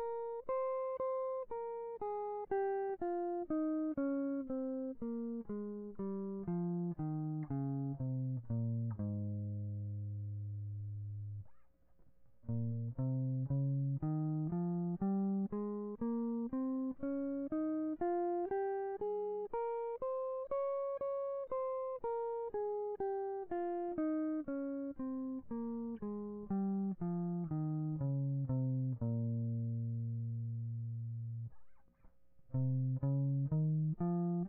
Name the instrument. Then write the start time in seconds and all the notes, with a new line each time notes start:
electric guitar
0.00 A#4
0.49 C5
1.00 C5
1.52 A#4
2.02 G#4
2.52 G4
3.02 F4
3.51 D#4
3.98 C#4
4.51 C4
5.03 A#3
5.50 G#3
6.01 G3
6.49 F3
7.01 D#3
7.52 C#3
8.02 C3
8.53 A#2
9.01 G#2
12.51 A#2
13.00 C3
13.52 C#3
14.04 D#3
14.54 F3
15.03 G3
15.53 G#3
16.02 A#3
16.54 C4
17.04 C#4
17.53 D#4
18.02 F4
18.52 G4
19.02 G#4
19.54 A#4
20.02 C5
20.52 C#5
21.02 C#5
21.52 C5
22.04 A#4
22.55 G#4
23.01 G4
23.52 F4
23.99 D#4
24.49 C#4
25.00 C4
25.52 A#3
26.04 G#3
26.52 G3
27.03 F3
27.53 D#3
28.02 C#3
28.51 C3
29.03 A#2
32.57 C3
33.05 C#3
33.53 D#3
34.02 F3